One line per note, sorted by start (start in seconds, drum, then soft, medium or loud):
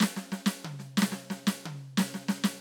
0.00 snare loud
0.02 snare loud
0.16 snare medium
0.32 snare loud
0.46 snare loud
0.65 high tom loud
0.79 snare medium
0.97 snare loud
1.02 snare loud
1.12 snare medium
1.30 snare loud
1.47 snare loud
1.65 high tom loud
1.97 snare loud
1.99 snare loud
2.14 snare medium
2.28 snare loud
2.44 snare loud